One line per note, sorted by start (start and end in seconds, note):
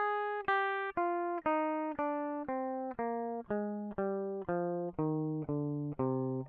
0.00 0.47 G#4
0.49 0.94 G4
0.98 1.41 F4
1.47 1.97 D#4
1.99 2.49 D4
2.49 2.95 C4
3.00 3.45 A#3
3.51 3.95 G#3
3.99 4.46 G3
4.50 4.93 F3
5.00 5.46 D#3
5.50 5.97 D3
6.01 6.47 C3